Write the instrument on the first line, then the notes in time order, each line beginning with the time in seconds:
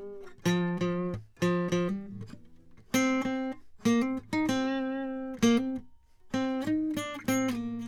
acoustic guitar
0.47 F3
0.83 F3
1.43 F3
1.74 F3
1.91 G3
2.95 C4
3.23 C4
3.87 A#3
4.04 C4
4.34 D#4
4.50 C4
5.44 A#3
5.59 C4
6.35 C4
6.69 D#4
6.99 D4
7.30 C4
7.50 A#3